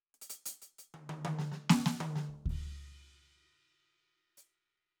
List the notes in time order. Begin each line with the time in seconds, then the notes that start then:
0.14 closed hi-hat
0.21 closed hi-hat
0.30 closed hi-hat
0.46 closed hi-hat
0.62 closed hi-hat
0.78 closed hi-hat
0.94 high tom
1.09 high tom
1.25 high tom
1.39 snare
1.52 snare
1.70 snare
1.86 snare
2.00 high tom
2.15 snare
2.29 kick
2.46 kick, crash
4.37 hi-hat pedal